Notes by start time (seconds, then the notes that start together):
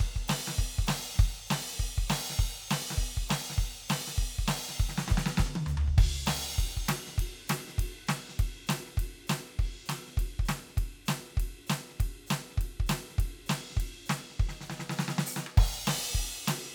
0.01 kick
0.17 kick
0.28 snare, hi-hat pedal, crash
0.48 snare
0.59 kick
0.79 kick
0.87 snare, hi-hat pedal, crash
1.16 kick, snare
1.48 snare, hi-hat pedal
1.52 crash
1.73 snare
1.80 kick
1.99 kick
2.08 snare, hi-hat pedal, crash
2.31 snare
2.40 kick
2.68 snare, hi-hat pedal, crash
2.91 snare
2.98 kick
3.18 kick
3.28 snare, hi-hat pedal, crash
3.51 snare
3.59 kick
3.79 kick
3.89 snare, hi-hat pedal, crash
4.08 snare
4.19 kick
4.39 kick
4.47 snare, hi-hat pedal, crash
4.69 snare
4.76 hi-hat pedal
4.80 kick
4.90 snare
4.98 snare
5.09 kick, snare, hi-hat pedal
5.18 snare
5.27 snare
5.38 kick, snare, hi-hat pedal
5.47 high tom
5.56 high tom
5.67 floor tom, hi-hat pedal
5.78 floor tom
5.88 kick
5.99 kick, ride
6.27 snare, hi-hat pedal, crash
6.49 snare
6.59 kick, ride
6.78 kick
6.87 snare, hi-hat pedal, ride
7.08 snare
7.19 kick, ride
7.48 snare, hi-hat pedal, ride
7.68 snare
7.79 kick, ride
8.08 snare, hi-hat pedal, ride
8.30 snare
8.40 kick, ride
8.68 snare, hi-hat pedal, ride
8.88 snare
8.92 snare
8.98 kick, ride
9.28 snare, hi-hat pedal, ride
9.49 cross-stick
9.60 kick, ride
9.87 snare, hi-hat pedal, ride
10.07 snare
10.18 kick, ride
10.40 kick
10.46 snare, hi-hat pedal
10.50 ride
10.69 snare
10.78 kick, ride
11.07 snare, hi-hat pedal, ride
11.29 snare
11.38 kick, ride
11.68 snare, hi-hat pedal, ride
11.90 snare
12.01 kick, ride
12.28 snare, hi-hat pedal, ride
12.51 snare
12.58 kick, ride
12.81 kick
12.87 snare, hi-hat pedal, ride
13.11 snare
13.19 kick, ride
13.42 kick
13.47 snare, hi-hat pedal, ride
13.71 snare
13.78 kick, ride
14.07 snare, hi-hat pedal, ride
14.30 snare
14.40 kick, ride
14.49 snare
14.62 snare
14.66 hi-hat pedal
14.71 snare
14.80 snare
14.90 snare
14.97 snare, hi-hat pedal
15.09 snare
15.19 snare
15.27 open hi-hat
15.37 snare
15.47 cross-stick
15.58 kick, crash
15.87 snare, hi-hat pedal, crash
15.93 snare
16.11 snare
16.15 kick
16.20 ride
16.45 snare, hi-hat pedal
16.49 ride
16.64 snare